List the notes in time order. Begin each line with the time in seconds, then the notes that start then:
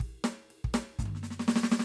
0.00 kick, ride
0.24 snare, ride
0.50 ride
0.64 kick
0.74 snare, ride
0.99 kick, floor tom, hi-hat pedal
1.06 high tom
1.15 snare
1.23 snare, hi-hat pedal
1.31 snare
1.39 snare
1.47 snare, hi-hat pedal
1.56 snare
1.63 snare
1.71 snare, hi-hat pedal
1.79 snare